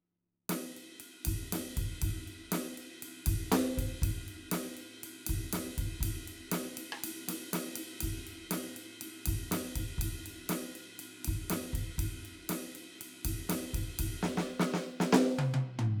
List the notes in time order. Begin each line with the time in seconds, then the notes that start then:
0.49 snare, ride
0.76 ride
1.00 ride
1.25 kick, ride
1.52 snare, ride
1.77 kick, ride
2.02 kick, ride
2.27 ride
2.52 snare, ride
2.77 ride
3.02 ride
3.26 kick, ride
3.52 snare, ride
3.77 kick, ride
4.02 kick, ride
4.28 ride
4.51 snare, ride
4.77 ride
5.03 ride
5.26 kick, ride
5.53 snare, ride
5.78 kick, ride
6.00 kick, ride
6.28 ride
6.51 snare, ride
6.77 ride
6.92 cross-stick
7.04 ride
7.28 snare, ride
7.53 snare, ride
7.76 ride
8.01 kick, ride
8.27 ride
8.51 snare, ride
8.76 ride
9.01 ride
9.26 kick, ride
9.51 snare, ride
9.75 kick, ride
9.98 kick, ride
10.26 ride
10.49 snare, ride
10.75 ride
10.99 ride
11.24 kick, ride
11.50 snare, ride
11.73 kick, ride
11.98 kick, ride
12.25 ride
12.49 snare, ride
12.75 ride
13.01 ride
13.25 kick, ride
13.49 snare, ride
13.73 kick, ride
13.99 kick, ride
14.23 snare
14.37 snare
14.59 snare
14.74 snare
15.00 snare
15.12 snare
15.38 high tom
15.54 high tom
15.79 mid tom